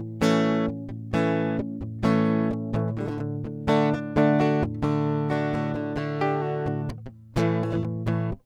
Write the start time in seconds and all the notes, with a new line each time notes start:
0.00 A2
0.23 E3 A3 C#4 F#4
0.70 A2
0.91 A2
1.16 A2 E3 A3 C#4
1.61 A2
1.83 A2
2.05 A2 E3 A3 C#4 F#4
2.53 A2
2.75 A2 A3
2.99 A2 G3
3.08 G#3
3.20 A2 D3 A3
3.30 A3
3.46 A2 D3 A3
3.70 D3 A3 D4 F#4
3.84 A3
3.96 A2 D3 D4
4.18 D3 A3 D4 F#4
4.42 A3 D4 F#4
4.65 A2
4.76 A2
4.84 D3 A3 D4 F#4
5.32 D3 A3 D4 F#4
5.55 A2 D3 A3
5.77 D3
5.98 D3 A3 D4
6.23 D4 G4
6.44 F#4
6.68 A2 D3 A3
6.91 A2
7.08 A2
7.38 A2 E3 A3 C#4
7.65 E3 A3
7.73 A2 E3 A3
7.85 A2 E3 A3
8.09 A2 E3 A3